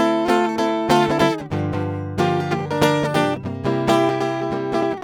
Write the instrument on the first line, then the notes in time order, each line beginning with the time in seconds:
acoustic guitar
0.00 A3 C4 E4 A4
0.27 A3 C4 F4 A4
0.51 A4
0.61 A3 C4 E4 A4
0.91 D3 A3 C4 F4 A4
1.10 D3 C4 E4 A4
1.22 D3 G3 C4 E4 A4
1.44 D3
1.53 G2 D3 F3
1.74 G2 D3 F3
2.20 G2 D3 F3 A#3 F4 G4
2.42 F4 G4
2.53 F3 A#3 D4 G4
2.61 G2 D3 F3
2.72 A#3 D4 A#4
2.83 D3 F3 A#3 D4 A#4
3.04 F3 A#3 D4
3.16 F3 A#3 D4 G4
3.24 G2 C3 F3
3.38 G3 B3
3.45 G2 C3 G3 A#3
3.66 C3 G3 A#3 E4 G4
3.89 G2 G3 A#3 E4 G4
4.11 A#3 E4 G4
4.23 A#3 E4 G4
4.42 A#3 E4 G4
4.53 C3 G3 A#3 E4
4.74 G3 A#3 E4 G4
4.85 E4 G4